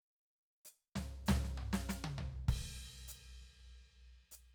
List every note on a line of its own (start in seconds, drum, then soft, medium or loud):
0.65 hi-hat pedal medium
0.95 snare medium
0.95 floor tom medium
1.26 snare medium
1.26 floor tom loud
1.26 hi-hat pedal medium
1.44 snare soft
1.57 mid tom medium
1.73 snare medium
1.89 snare medium
1.89 hi-hat pedal medium
2.04 high tom loud
2.18 floor tom medium
2.35 kick soft
2.48 kick medium
2.48 crash medium
3.08 hi-hat pedal medium
4.31 hi-hat pedal medium